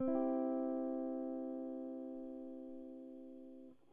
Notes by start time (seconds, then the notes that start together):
0.00 C4
0.07 E4
0.16 G4